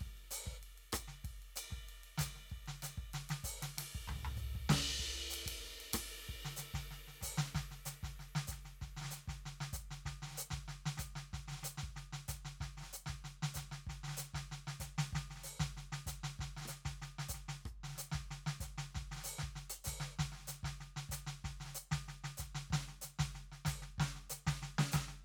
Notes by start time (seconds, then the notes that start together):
0.01 kick, ride bell
0.18 ride
0.31 hi-hat pedal, ride bell
0.46 kick, snare
0.63 ride
0.78 ride
0.93 kick, cross-stick, hi-hat pedal, ride bell
1.08 snare
1.25 kick, ride
1.42 ride
1.56 hi-hat pedal, ride bell
1.71 kick, snare
1.89 ride
2.04 ride
2.18 kick, snare, hi-hat pedal, ride bell
2.36 snare
2.50 kick, ride bell
2.67 snare, ride
2.83 snare, hi-hat pedal, ride bell
2.98 kick
3.14 snare, ride
3.30 snare, ride
3.44 kick, hi-hat pedal
3.63 snare, ride
3.78 snare, ride
3.95 kick
4.08 floor tom, high tom
4.25 floor tom, high tom
4.37 kick, hi-hat pedal
4.56 kick
4.70 snare, ride
4.88 snare
5.00 kick, ride
5.19 snare
5.31 hi-hat pedal, ride
5.47 kick, ride
5.64 snare
5.81 ride
5.94 kick, cross-stick, hi-hat pedal, ride
6.14 snare
6.29 kick
6.45 snare
6.57 snare, hi-hat pedal
6.74 kick, snare
6.91 snare
7.08 snare
7.21 kick, snare, hi-hat pedal
7.38 snare
7.55 kick, snare
7.72 snare
7.86 snare, hi-hat pedal
8.03 kick, snare
8.20 snare
8.36 snare
8.48 kick, snare, hi-hat pedal
8.65 snare
8.82 kick, snare
8.97 snare
9.02 snare
9.05 snare
9.08 snare
9.11 snare, hi-hat pedal
9.13 snare
9.28 kick, snare
9.46 snare
9.61 snare
9.73 kick, snare, hi-hat pedal
9.91 snare
10.06 kick, snare
10.23 snare
10.27 snare
10.31 snare
10.35 snare, hi-hat pedal
10.51 kick, snare
10.68 snare
10.86 snare
10.98 kick, snare, hi-hat pedal
11.16 snare
11.34 kick, snare
11.48 snare
11.52 snare
11.56 snare
11.63 snare, hi-hat pedal
11.78 snare
11.84 kick
11.97 snare
12.13 snare
12.29 kick, snare, hi-hat pedal
12.45 snare
12.61 kick, snare
12.78 snare
12.81 snare
12.84 snare
12.90 snare, hi-hat pedal
13.07 kick, snare
13.25 snare
13.43 snare
13.55 kick, snare, hi-hat pedal
13.72 snare
13.87 kick, snare
14.04 snare
14.08 snare
14.11 snare
14.13 snare
14.17 snare, hi-hat pedal
14.34 kick, snare
14.52 snare
14.68 snare
14.80 kick, snare, hi-hat pedal
14.98 snare
15.13 kick, snare
15.31 snare
15.36 snare
15.40 snare
15.44 snare, hi-hat pedal
15.60 kick, snare
15.77 snare
15.93 snare
16.07 kick, snare, hi-hat pedal
16.24 snare
16.40 kick, snare
16.57 snare
16.62 cross-stick, snare
16.68 snare, hi-hat pedal
16.86 kick, snare
17.02 snare
17.19 snare
17.29 kick, hi-hat pedal
17.34 snare
17.49 snare
17.66 kick, cross-stick
17.84 snare
17.88 snare
17.92 snare
17.96 snare
17.98 snare, hi-hat pedal
18.12 kick, snare
18.31 snare
18.47 snare
18.61 kick, snare, hi-hat pedal
18.69 kick
18.78 snare
18.95 kick, snare
19.12 snare
19.16 snare
19.20 snare
19.24 snare, hi-hat pedal
19.39 snare
19.43 kick
19.56 snare
19.70 closed hi-hat
19.85 kick, snare, hi-hat pedal
20.01 snare
20.19 kick, snare
20.32 snare
20.37 snare
20.40 snare
20.44 snare, hi-hat pedal
20.49 snare
20.64 kick, snare
20.81 snare
20.97 snare
21.10 kick, snare, hi-hat pedal
21.27 snare
21.45 kick, snare
21.61 snare
21.65 snare
21.69 snare
21.75 hi-hat pedal
21.92 kick, snare
22.09 snare
22.24 snare
22.38 kick, snare, hi-hat pedal
22.55 snare
22.71 kick, snare
22.88 snare
23.02 snare, hi-hat pedal
23.19 kick, snare
23.35 snare
23.52 snare
23.66 kick, snare, hi-hat pedal
23.82 snare
23.99 kick, snare
24.16 snare
24.30 snare, hi-hat pedal
24.47 kick, snare
24.63 snare
24.79 snare
24.92 kick, snare, hi-hat pedal
25.08 snare